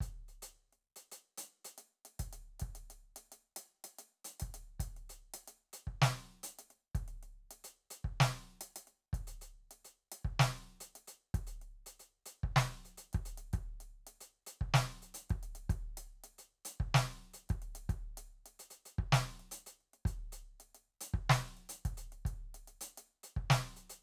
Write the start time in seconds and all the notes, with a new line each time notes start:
0.01 closed hi-hat, kick
0.29 closed hi-hat
0.43 closed hi-hat
0.73 closed hi-hat
0.96 closed hi-hat
1.12 closed hi-hat
1.38 closed hi-hat
1.65 closed hi-hat
1.78 closed hi-hat
2.05 closed hi-hat
2.20 kick, closed hi-hat
2.33 closed hi-hat
2.60 kick, closed hi-hat
2.75 closed hi-hat
2.90 closed hi-hat
3.16 closed hi-hat
3.32 closed hi-hat
3.57 closed hi-hat
3.84 closed hi-hat
3.99 closed hi-hat
4.25 closed hi-hat
4.40 kick, closed hi-hat
4.54 closed hi-hat
4.80 kick, closed hi-hat
4.97 closed hi-hat
5.10 closed hi-hat
5.34 closed hi-hat
5.48 closed hi-hat
5.74 closed hi-hat
5.87 kick
6.02 snare
6.15 closed hi-hat
6.44 closed hi-hat
6.59 closed hi-hat
6.71 closed hi-hat
6.95 kick, closed hi-hat
7.08 closed hi-hat
7.23 closed hi-hat
7.51 closed hi-hat
7.64 closed hi-hat
7.91 closed hi-hat
8.05 kick
8.21 snare
8.32 closed hi-hat
8.61 closed hi-hat
8.76 closed hi-hat
8.88 closed hi-hat
9.13 kick, closed hi-hat
9.28 closed hi-hat
9.42 closed hi-hat
9.71 closed hi-hat
9.85 closed hi-hat
10.12 closed hi-hat
10.25 kick
10.40 snare
10.81 closed hi-hat
10.96 closed hi-hat
11.08 closed hi-hat
11.35 kick, closed hi-hat
11.47 closed hi-hat
11.62 closed hi-hat
11.87 closed hi-hat
12.00 closed hi-hat
12.26 closed hi-hat
12.44 kick
12.56 snare
12.85 closed hi-hat
12.98 closed hi-hat
13.13 kick, closed hi-hat
13.26 closed hi-hat
13.38 closed hi-hat
13.54 kick, closed hi-hat
13.81 closed hi-hat
14.07 closed hi-hat
14.21 closed hi-hat
14.47 closed hi-hat
14.61 kick
14.74 snare
15.03 closed hi-hat
15.15 closed hi-hat
15.30 kick, closed hi-hat
15.43 closed hi-hat
15.55 closed hi-hat
15.70 kick, closed hi-hat
15.98 closed hi-hat
16.24 closed hi-hat
16.39 closed hi-hat
16.65 closed hi-hat
16.80 kick
16.95 snare
17.21 closed hi-hat
17.34 closed hi-hat
17.50 kick, closed hi-hat
17.62 closed hi-hat
17.75 closed hi-hat
17.90 kick, closed hi-hat
18.18 closed hi-hat
18.46 closed hi-hat
18.60 closed hi-hat
18.71 closed hi-hat
18.86 closed hi-hat
18.99 kick
19.13 snare
19.40 closed hi-hat
19.52 closed hi-hat
19.67 closed hi-hat
19.81 closed hi-hat
19.94 closed hi-hat
20.06 closed hi-hat, kick
20.33 closed hi-hat
20.45 closed hi-hat
20.60 closed hi-hat
20.75 closed hi-hat
21.01 closed hi-hat
21.14 kick
21.30 snare
21.57 closed hi-hat
21.69 closed hi-hat
21.85 kick, closed hi-hat
21.98 closed hi-hat
22.12 closed hi-hat
22.26 kick, closed hi-hat
22.41 closed hi-hat
22.55 closed hi-hat
22.68 closed hi-hat
22.81 closed hi-hat
22.98 closed hi-hat
23.24 closed hi-hat
23.37 kick
23.50 snare
23.77 closed hi-hat
23.90 closed hi-hat